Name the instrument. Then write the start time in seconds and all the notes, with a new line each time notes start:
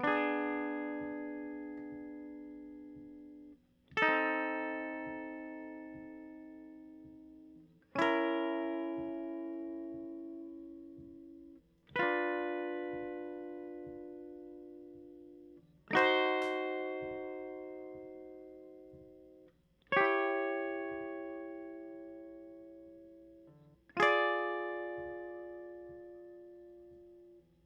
electric guitar
0.00 B3 D4
0.08 G#4
3.97 A4
4.02 D#4
4.09 C4
7.96 C#4 E4
8.02 A#4
11.96 F4 B4
12.03 D4
15.91 A3 D#4 F#4
15.97 C5
19.93 C#5
19.97 E4 G4
23.97 F4 G#4
24.03 D5